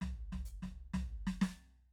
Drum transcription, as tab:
Hi-hat    |---p--------|
Snare     |o-g-g-o-oo--|
Floor tom |o-o-o-o-----|